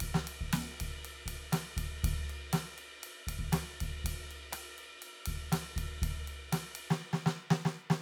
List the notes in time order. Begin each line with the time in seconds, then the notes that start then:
0.01 kick, ride
0.15 snare
0.28 ride
0.42 kick
0.53 snare, ride
0.81 kick, ride
1.05 ride
1.26 kick, ride
1.53 snare, ride
1.77 kick, ride
2.04 kick, ride
2.30 ride
2.54 snare, ride
2.79 ride
3.04 ride
3.28 kick, ride
3.40 kick
3.53 snare, ride
3.81 kick, ride
4.05 kick, ride
4.31 ride
4.53 cross-stick, ride
4.79 ride
5.03 ride
5.26 kick, ride
5.53 snare, ride
5.77 kick, ride
6.03 kick, ride
6.28 ride
6.53 snare, ride
6.76 ride
6.91 snare
7.14 snare
7.27 snare
7.51 snare
7.66 snare
7.91 snare